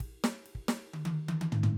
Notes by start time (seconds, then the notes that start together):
0.00 kick, ride
0.24 snare, ride
0.46 ride
0.55 kick
0.68 snare, ride
0.93 high tom
1.05 high tom
1.28 high tom
1.41 high tom
1.52 floor tom
1.63 floor tom